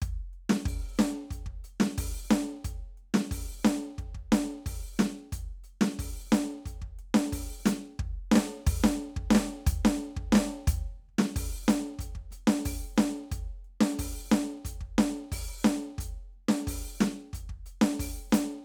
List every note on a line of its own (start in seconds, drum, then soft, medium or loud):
0.01 closed hi-hat medium
0.01 kick medium
0.33 closed hi-hat soft
0.49 snare loud
0.65 open hi-hat medium
0.65 kick loud
0.97 closed hi-hat soft
0.97 snare loud
0.97 hi-hat pedal soft
1.30 closed hi-hat medium
1.30 kick medium
1.46 kick medium
1.64 closed hi-hat soft
1.80 snare loud
1.98 open hi-hat loud
1.98 kick medium
2.29 closed hi-hat medium
2.29 snare loud
2.29 hi-hat pedal soft
2.64 closed hi-hat medium
2.64 kick medium
2.97 closed hi-hat soft
3.14 snare loud
3.31 open hi-hat loud
3.31 kick medium
3.63 closed hi-hat soft
3.63 snare loud
3.63 hi-hat pedal soft
3.98 kick medium
3.98 closed hi-hat soft
4.14 kick medium
4.14 crash soft
4.32 closed hi-hat medium
4.32 snare loud
4.66 open hi-hat medium
4.66 kick medium
4.96 closed hi-hat medium
4.96 snare loud
4.96 hi-hat pedal soft
5.32 closed hi-hat medium
5.32 kick medium
5.64 closed hi-hat soft
5.81 snare loud
5.99 open hi-hat loud
5.99 kick medium
6.32 closed hi-hat medium
6.32 snare loud
6.32 hi-hat pedal soft
6.65 closed hi-hat medium
6.65 kick medium
6.82 kick medium
6.99 closed hi-hat soft
7.14 snare loud
7.32 open hi-hat loud
7.32 kick medium
7.64 closed hi-hat loud
7.64 snare loud
7.64 hi-hat pedal soft
7.99 kick medium
8.31 snare loud
8.35 snare loud
8.66 open hi-hat loud
8.66 kick loud
8.84 snare loud
8.90 hi-hat pedal soft
9.16 kick medium
9.30 snare loud
9.35 snare loud
9.66 open hi-hat loud
9.66 kick loud
9.85 snare loud
9.96 hi-hat pedal soft
10.16 kick medium
10.32 snare loud
10.35 snare loud
10.67 closed hi-hat loud
10.67 kick loud
11.08 kick soft
11.18 snare loud
11.23 cross-stick medium
11.36 open hi-hat loud
11.36 kick medium
11.66 closed hi-hat medium
11.66 snare loud
11.66 hi-hat pedal soft
11.99 closed hi-hat medium
11.99 kick medium
12.15 kick soft
12.31 closed hi-hat medium
12.31 snare soft
12.47 snare loud
12.65 open hi-hat loud
12.65 kick medium
12.96 snare loud
12.96 closed hi-hat soft
12.96 hi-hat pedal soft
13.31 closed hi-hat medium
13.31 kick medium
13.64 closed hi-hat soft
13.81 snare loud
13.99 open hi-hat loud
13.99 kick medium
14.30 snare loud
14.30 closed hi-hat soft
14.30 hi-hat pedal medium
14.65 closed hi-hat loud
14.65 kick medium
14.81 kick medium
14.98 snare loud
14.98 closed hi-hat soft
15.32 open hi-hat loud
15.32 kick medium
15.63 snare loud
15.63 hi-hat pedal soft
15.98 closed hi-hat loud
15.98 kick medium
16.33 closed hi-hat soft
16.48 snare loud
16.67 open hi-hat loud
16.67 kick medium
16.99 closed hi-hat medium
16.99 snare loud
16.99 hi-hat pedal soft
17.33 closed hi-hat medium
17.33 kick medium
17.49 kick soft
17.66 closed hi-hat medium
17.81 snare loud
17.99 open hi-hat loud
17.99 kick medium
18.29 snare loud
18.29 hi-hat pedal soft
18.33 closed hi-hat loud